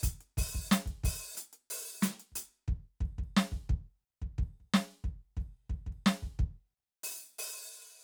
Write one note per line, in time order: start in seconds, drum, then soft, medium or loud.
0.01 closed hi-hat loud
0.01 kick medium
0.01 hi-hat pedal medium
0.21 closed hi-hat soft
0.38 open hi-hat loud
0.38 kick medium
0.55 kick medium
0.68 snare loud
0.68 hi-hat pedal medium
0.72 closed hi-hat loud
0.86 kick medium
0.86 closed hi-hat soft
1.04 open hi-hat loud
1.04 kick medium
1.35 closed hi-hat loud
1.35 hi-hat pedal medium
1.53 closed hi-hat medium
1.71 open hi-hat loud
2.02 closed hi-hat loud
2.02 snare loud
2.02 hi-hat pedal medium
2.20 closed hi-hat medium
2.32 closed hi-hat loud
2.32 kick soft
2.68 kick medium
3.01 kick medium
3.06 crash soft
3.19 kick medium
3.23 snare soft
3.23 crash soft
3.23 ride soft
3.37 snare loud
3.52 kick medium
3.70 kick medium
4.22 kick medium
4.38 kick medium
4.44 crash soft
4.60 kick soft
4.74 snare loud
5.04 kick medium
5.04 snare soft
5.37 kick medium
5.37 cross-stick soft
5.37 crash soft
5.41 high tom soft
5.41 ride soft
5.70 kick medium
5.74 snare soft
5.74 crash soft
5.87 kick soft
5.92 kick soft
5.92 snare soft
5.92 crash soft
5.92 ride soft
6.06 snare loud
6.23 kick soft
6.39 kick medium
7.04 open hi-hat loud
7.39 open hi-hat loud